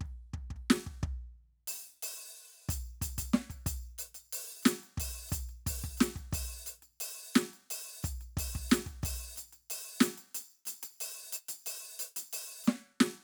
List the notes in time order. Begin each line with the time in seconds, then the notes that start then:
0.01 kick, cross-stick, crash
0.05 high tom, ride
0.34 kick
0.38 snare, crash
0.51 kick
0.56 kick, snare, crash, ride
0.70 snare
0.87 kick
1.03 kick
1.68 percussion
2.03 percussion
2.69 kick, percussion
3.02 kick, percussion
3.18 kick, percussion
3.34 snare
3.50 kick, percussion
3.66 kick, percussion
3.98 percussion
4.15 percussion
4.33 percussion
4.63 snare, percussion
4.66 percussion
4.83 percussion
4.98 kick, percussion
5.29 kick, percussion
5.33 percussion
5.49 percussion
5.67 kick, percussion
5.84 kick
5.98 snare, percussion
6.02 percussion
6.16 kick, percussion
6.32 kick, percussion
6.34 percussion
6.66 percussion
6.83 percussion
7.00 percussion
7.35 snare, percussion
7.37 percussion
7.53 percussion
7.71 percussion
8.03 kick, percussion
8.05 percussion
8.21 percussion
8.37 kick, percussion
8.55 kick
8.70 snare, percussion
8.73 percussion
8.86 kick, percussion
9.03 kick, percussion
9.05 percussion
9.36 percussion
9.53 percussion
9.70 percussion
10.00 snare, percussion
10.02 percussion
10.18 percussion
10.35 percussion
10.66 percussion
10.67 percussion
10.83 percussion
11.01 percussion
11.33 percussion
11.36 percussion
11.49 percussion
11.66 percussion
11.99 percussion
12.17 percussion
12.33 percussion
12.64 snare, percussion
13.01 snare